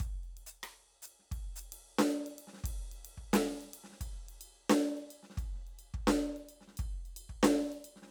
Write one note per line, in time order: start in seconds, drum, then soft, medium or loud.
0.00 kick medium
0.00 hi-hat pedal soft
0.00 ride soft
0.23 ride soft
0.37 ride soft
0.46 hi-hat pedal medium
0.63 cross-stick medium
0.63 ride medium
1.02 hi-hat pedal medium
1.02 ride soft
1.19 snare soft
1.31 kick soft
1.31 ride soft
1.44 snare soft
1.56 hi-hat pedal medium
1.56 ride soft
1.72 ride medium
1.98 snare loud
1.98 ride medium
2.09 hi-hat pedal soft
2.26 ride soft
2.38 ride medium
2.47 snare soft
2.53 snare soft
2.57 snare soft
2.64 kick soft
2.64 ride medium
2.91 ride soft
3.05 ride medium
3.17 kick soft
3.33 snare loud
3.33 ride medium
3.61 ride soft
3.73 ride medium
3.84 snare soft
3.89 snare soft
3.92 snare soft
4.00 kick soft
4.00 ride bell medium
4.11 snare soft
4.14 snare soft
4.28 ride soft
4.41 ride bell medium
4.69 snare loud
4.69 ride medium
4.97 ride soft
5.10 ride bell soft
5.23 snare soft
5.30 snare soft
5.34 kick soft
5.34 snare soft
5.38 ride bell soft
5.54 snare soft
5.67 ride soft
5.79 ride bell soft
5.94 kick soft
6.07 snare loud
6.07 ride bell soft
6.36 ride soft
6.49 ride bell soft
6.61 snare soft
6.67 snare soft
6.73 snare soft
6.77 kick medium
6.77 ride bell soft
6.91 snare soft
6.96 snare soft
7.05 ride bell soft
7.16 ride bell medium
7.29 kick soft
7.43 snare loud
7.43 ride bell medium
7.72 snare soft
7.72 ride soft
7.84 ride bell soft
7.96 snare soft
8.02 snare soft
8.06 snare soft